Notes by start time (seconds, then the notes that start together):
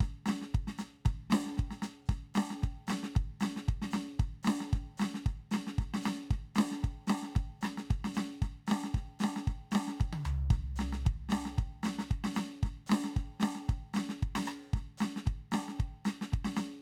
0.01 kick, snare
0.26 snare, hi-hat pedal
0.29 snare
0.42 snare
0.55 kick, snare
0.68 snare
0.79 snare, hi-hat pedal
1.06 kick, snare
1.31 snare, hi-hat pedal
1.33 snare
1.47 snare
1.58 kick, snare
1.71 snare
1.83 snare, hi-hat pedal
2.06 kick, snare, hi-hat pedal
2.35 snare, hi-hat pedal
2.38 snare
2.51 snare
2.63 kick, snare
2.88 snare, hi-hat pedal
2.90 snare
3.04 snare
3.16 kick, snare
3.41 snare, hi-hat pedal
3.57 snare
3.68 kick, snare
3.82 snare
3.91 snare, hi-hat pedal
4.20 kick, snare
4.44 snare, hi-hat pedal
4.48 snare
4.61 snare
4.73 kick, snare
4.98 snare, hi-hat pedal
5.02 snare
5.15 snare
5.27 kick, snare
5.52 snare, hi-hat pedal
5.54 snare
5.67 snare
5.79 kick, snare
5.94 snare
6.03 snare, hi-hat pedal
6.21 snare
6.31 kick, snare
6.55 snare, hi-hat pedal
6.59 snare
6.72 snare
6.84 kick, snare
7.08 snare, hi-hat pedal
7.10 snare
7.23 snare
7.36 kick, snare
7.62 cross-stick, snare, hi-hat pedal
7.78 snare
7.91 kick, snare
8.05 snare
8.15 snare, hi-hat pedal
8.42 kick, snare
8.67 snare, hi-hat pedal
8.72 snare
8.84 snare
8.95 kick, snare
9.20 snare, hi-hat pedal
9.24 snare
9.37 snare
9.48 kick, snare
9.72 snare, hi-hat pedal
9.76 snare
9.88 snare
10.01 kick, snare
10.13 high tom
10.25 floor tom, hi-hat pedal
10.51 kick, snare
10.76 snare, hi-hat pedal
10.93 snare
11.06 kick, snare
11.29 snare, hi-hat pedal
11.33 snare
11.46 snare
11.58 kick, snare
11.84 snare, hi-hat pedal
11.86 snare
11.99 snare
12.11 kick, snare
12.25 snare
12.35 snare, hi-hat pedal
12.63 kick, snare
12.87 snare, hi-hat pedal
12.92 snare
13.05 snare
13.17 kick, snare
13.40 snare, hi-hat pedal
13.43 snare
13.56 snare
13.69 kick, snare
13.94 snare, hi-hat pedal
13.97 snare
14.10 snare
14.23 kick, snare
14.36 snare
14.46 cross-stick, hi-hat pedal
14.74 kick, snare
14.98 snare, hi-hat pedal
15.03 snare
15.17 snare
15.26 kick, snare
15.52 snare, hi-hat pedal
15.54 snare
15.69 snare
15.80 kick, snare
16.05 snare, hi-hat pedal
16.07 snare
16.22 snare
16.33 kick, snare
16.45 snare
16.57 snare, hi-hat pedal